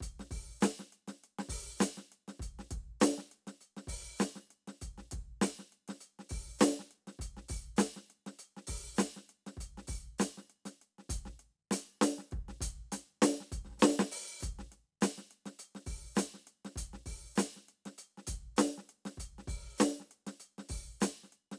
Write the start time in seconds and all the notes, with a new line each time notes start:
0.01 closed hi-hat, kick
0.20 snare
0.31 open hi-hat, kick
0.61 closed hi-hat, snare, hi-hat pedal
0.80 snare
0.93 closed hi-hat
1.08 snare, closed hi-hat
1.24 closed hi-hat
1.39 snare
1.49 open hi-hat, kick
1.79 closed hi-hat, snare, hi-hat pedal
1.98 snare
2.12 closed hi-hat
2.28 snare, closed hi-hat
2.40 closed hi-hat, kick
2.59 snare
2.71 kick, open hi-hat
3.01 closed hi-hat, snare, hi-hat pedal
3.18 snare
3.32 closed hi-hat
3.48 snare, closed hi-hat
3.61 closed hi-hat
3.77 snare
3.88 open hi-hat, kick
4.19 closed hi-hat, snare, hi-hat pedal
4.36 snare
4.51 closed hi-hat
4.68 snare, closed hi-hat
4.82 closed hi-hat, kick
4.98 snare
5.12 kick, open hi-hat
5.42 open hi-hat, snare, hi-hat pedal
5.59 snare
5.73 closed hi-hat
5.88 snare, closed hi-hat
6.01 closed hi-hat
6.20 snare
6.30 open hi-hat, kick
6.59 closed hi-hat, snare, hi-hat pedal
6.80 snare
6.91 closed hi-hat
7.08 snare, closed hi-hat
7.20 closed hi-hat, kick
7.37 snare
7.49 open hi-hat, kick
7.77 closed hi-hat, snare, hi-hat pedal
7.97 snare
8.11 closed hi-hat
8.27 snare, closed hi-hat
8.39 closed hi-hat
8.57 snare
8.68 open hi-hat, kick
8.97 closed hi-hat, snare, hi-hat pedal
9.17 snare
9.30 closed hi-hat
9.47 snare, closed hi-hat
9.57 closed hi-hat, kick
9.78 snare
9.88 open hi-hat, kick
10.19 closed hi-hat, snare, hi-hat pedal
10.38 snare
10.50 closed hi-hat
10.66 closed hi-hat, snare
10.82 closed hi-hat
10.99 snare
11.10 closed hi-hat, kick
11.26 snare
11.40 closed hi-hat
11.71 closed hi-hat, snare
12.02 closed hi-hat, snare
12.19 snare
12.32 kick, closed hi-hat
12.49 snare
12.61 closed hi-hat, kick
12.92 closed hi-hat, snare
13.22 closed hi-hat, snare
13.41 snare
13.52 closed hi-hat, kick
13.65 snare
13.69 snare
13.72 snare
13.78 snare, hi-hat pedal
13.83 snare
14.00 snare
14.12 open hi-hat
14.41 closed hi-hat, kick, hi-hat pedal
14.59 snare
14.72 snare, closed hi-hat
15.02 closed hi-hat, snare, hi-hat pedal
15.18 snare
15.31 closed hi-hat
15.46 snare, closed hi-hat
15.60 closed hi-hat
15.76 snare
15.87 open hi-hat, kick
16.16 closed hi-hat, snare, hi-hat pedal
16.34 snare
16.48 closed hi-hat
16.65 snare, closed hi-hat
16.76 closed hi-hat, kick
16.94 snare
17.06 open hi-hat, kick
17.36 closed hi-hat, snare, hi-hat pedal
17.57 snare
17.69 closed hi-hat
17.86 snare, closed hi-hat
17.98 closed hi-hat
18.18 snare
18.27 closed hi-hat, kick, snare
18.57 closed hi-hat, snare, hi-hat pedal
18.78 snare
18.89 closed hi-hat
19.06 snare, closed hi-hat
19.18 closed hi-hat, kick
19.39 snare
19.48 open hi-hat, kick
19.78 closed hi-hat, snare, hi-hat pedal
20.00 snare
20.12 closed hi-hat
20.27 snare, closed hi-hat
20.40 closed hi-hat
20.59 snare
20.69 open hi-hat, kick
21.01 closed hi-hat, snare, hi-hat pedal
21.24 snare
21.33 closed hi-hat
21.52 snare, closed hi-hat